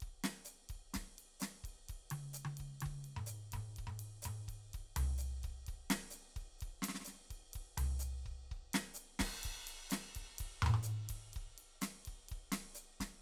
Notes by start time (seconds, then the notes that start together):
0.01 kick, ride
0.07 kick
0.24 snare, ride
0.45 hi-hat pedal, ride
0.70 kick, ride
0.75 kick
0.94 kick, snare, ride
1.01 kick
1.19 ride
1.40 snare, hi-hat pedal, ride
1.64 kick, ride
1.69 kick
1.89 kick, ride
1.95 kick
2.11 high tom, ride
2.34 hi-hat pedal, ride
2.45 high tom
2.58 kick, ride
2.81 high tom, ride
2.86 kick
2.91 kick
3.05 ride
3.17 mid tom
3.27 hi-hat pedal, ride
3.53 kick, mid tom, ride
3.77 kick, ride
3.84 kick, mid tom
4.00 ride
4.23 hi-hat pedal, mid tom, ride
4.49 kick, ride
4.74 kick, ride
4.80 kick
4.97 floor tom, ride
5.18 hi-hat pedal, ride
5.44 kick, ride
5.50 kick
5.67 kick, ride
5.74 kick
5.91 snare, ride
6.11 snare, hi-hat pedal, ride
6.37 kick, ride
6.42 kick
6.59 kick, hi-hat pedal, ride
6.68 kick
6.83 snare, ride
6.89 snare
6.95 snare
7.01 snare
7.05 snare, hi-hat pedal, ride
7.14 snare
7.20 snare
7.25 snare
7.30 kick, snare, ride
7.35 snare
7.43 snare
7.46 snare
7.54 kick, ride
7.61 kick
7.78 floor tom, ride
8.00 hi-hat pedal
8.26 kick
8.31 kick
8.52 kick
8.57 kick
8.74 snare, ride
8.94 hi-hat pedal, ride
9.20 kick, snare, crash
9.27 kick
9.44 kick, ride
9.51 kick
9.68 ride
9.90 snare, hi-hat pedal, ride
10.15 kick, ride
10.22 kick
10.39 kick, ride
10.46 kick
10.63 mid tom
10.67 mid tom
10.74 mid tom
10.83 hi-hat pedal
11.09 kick, ride
11.15 kick
11.34 kick, ride
11.42 kick
11.58 ride
11.82 snare, hi-hat pedal, ride
12.06 kick, ride
12.13 kick
12.29 kick, ride
12.37 kick
12.52 snare, ride
12.75 hi-hat pedal, ride
13.01 kick, snare, ride